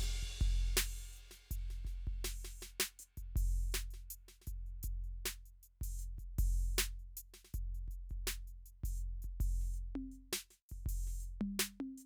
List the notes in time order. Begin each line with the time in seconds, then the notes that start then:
0.00 snare, hi-hat pedal
0.23 kick
0.41 kick, crash
0.77 open hi-hat, snare
1.13 hi-hat pedal
1.17 closed hi-hat
1.31 snare, closed hi-hat
1.51 closed hi-hat, kick
1.70 snare
1.85 kick, snare
1.89 closed hi-hat
2.08 kick
2.25 open hi-hat, snare
2.45 snare
2.61 snare, hi-hat pedal
2.80 snare
2.99 hi-hat pedal
3.18 kick, closed hi-hat
3.36 open hi-hat, kick
3.73 snare, closed hi-hat, hi-hat pedal
3.91 snare, closed hi-hat
4.11 closed hi-hat
4.29 snare, closed hi-hat
4.42 snare
4.47 closed hi-hat, kick
4.67 closed hi-hat
4.83 closed hi-hat, kick
5.04 closed hi-hat
5.26 closed hi-hat, snare
5.46 closed hi-hat
5.63 closed hi-hat
5.82 open hi-hat, kick
5.99 closed hi-hat, hi-hat pedal
6.19 kick, closed hi-hat
6.39 open hi-hat, kick
6.78 snare, hi-hat pedal
7.00 closed hi-hat
7.17 closed hi-hat
7.34 snare
7.38 closed hi-hat
7.45 snare
7.54 closed hi-hat, kick
7.75 closed hi-hat
7.88 kick, closed hi-hat
8.10 kick, closed hi-hat
8.27 closed hi-hat, snare
8.48 closed hi-hat
8.66 closed hi-hat
8.84 open hi-hat, kick
8.98 hi-hat pedal
9.22 kick, closed hi-hat
9.41 open hi-hat, kick
9.61 snare
9.74 hi-hat pedal
9.96 high tom
10.12 hi-hat pedal
10.33 snare
10.51 snare, hi-hat pedal
10.69 kick, open hi-hat
10.86 open hi-hat, kick
11.07 snare
11.21 hi-hat pedal
11.41 mid tom
11.60 snare, hi-hat pedal
11.80 high tom
11.98 hi-hat pedal